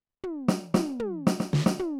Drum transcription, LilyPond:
\new DrumStaff \drummode { \time 4/4 \tempo 4 = 118 r8 tomfh8 sn8 <tomfh sn>8 toml8 sn16 sn16 sn16 sn16 tomfh8 | }